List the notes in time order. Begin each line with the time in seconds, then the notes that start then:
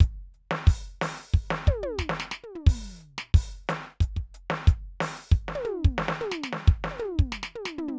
0.01 closed hi-hat, kick
0.35 closed hi-hat
0.52 snare
0.68 open hi-hat, kick
1.02 open hi-hat, snare
1.34 kick
1.51 snare
1.68 kick, high tom
1.83 high tom
1.99 kick, snare
2.10 snare
2.20 snare
2.32 snare
2.44 mid tom
2.55 floor tom
2.66 open hi-hat, kick, hi-hat pedal
2.98 closed hi-hat, hi-hat pedal
3.19 snare
3.35 open hi-hat, kick
3.67 closed hi-hat, snare, hi-hat pedal
4.01 closed hi-hat, kick
4.17 kick
4.35 closed hi-hat
4.51 snare
4.68 closed hi-hat, kick
5.01 open hi-hat, snare
5.32 kick, hi-hat pedal
5.49 snare
5.55 high tom
5.65 hi-hat pedal, mid tom
5.85 kick
5.99 snare, hi-hat pedal
6.09 snare
6.21 mid tom
6.32 snare
6.44 snare
6.53 snare
6.66 kick, hi-hat pedal
6.85 snare
6.91 high tom
6.99 hi-hat pedal, mid tom
7.19 kick
7.33 snare, hi-hat pedal
7.44 snare
7.56 mid tom
7.66 snare
7.78 floor tom